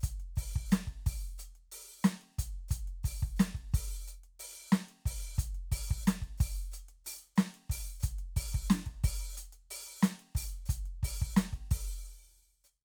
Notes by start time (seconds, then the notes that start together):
0.01 closed hi-hat, kick, hi-hat pedal
0.20 closed hi-hat
0.36 open hi-hat, kick, hi-hat pedal
0.56 kick
0.69 closed hi-hat, snare, hi-hat pedal
0.88 kick, closed hi-hat
1.07 open hi-hat, kick
1.38 closed hi-hat, hi-hat pedal
1.56 closed hi-hat
1.72 open hi-hat
2.03 closed hi-hat, snare, hi-hat pedal
2.21 closed hi-hat
2.39 closed hi-hat, kick
2.69 closed hi-hat, kick, hi-hat pedal
2.88 closed hi-hat
3.04 open hi-hat, kick, hi-hat pedal
3.23 kick
3.37 closed hi-hat, snare, hi-hat pedal
3.55 kick, closed hi-hat
3.72 open hi-hat, kick, hi-hat pedal
4.08 open hi-hat, hi-hat pedal
4.24 closed hi-hat
4.40 open hi-hat
4.72 open hi-hat, snare, hi-hat pedal
4.89 closed hi-hat
5.06 open hi-hat, kick
5.37 closed hi-hat, kick, hi-hat pedal
5.55 closed hi-hat
5.72 open hi-hat, kick
5.91 kick
6.03 closed hi-hat, hi-hat pedal
6.08 snare
6.22 kick, closed hi-hat
6.38 open hi-hat, kick, hi-hat pedal
6.72 closed hi-hat, hi-hat pedal
6.89 closed hi-hat
7.05 open hi-hat, hi-hat pedal
7.36 closed hi-hat, snare, hi-hat pedal
7.54 closed hi-hat
7.70 open hi-hat, kick, hi-hat pedal
8.00 closed hi-hat, kick, hi-hat pedal
8.19 closed hi-hat
8.37 open hi-hat, kick
8.55 kick
8.67 closed hi-hat, snare, hi-hat pedal
8.86 kick, closed hi-hat
9.04 open hi-hat, kick
9.35 closed hi-hat, hi-hat pedal
9.53 closed hi-hat
9.71 open hi-hat
10.01 closed hi-hat, snare, hi-hat pedal
10.20 closed hi-hat
10.35 open hi-hat, kick, hi-hat pedal
10.66 kick, hi-hat pedal
10.70 closed hi-hat
10.86 closed hi-hat
11.03 open hi-hat, kick
11.22 kick
11.34 closed hi-hat, snare, hi-hat pedal
11.53 kick, closed hi-hat
11.71 open hi-hat, kick
12.64 hi-hat pedal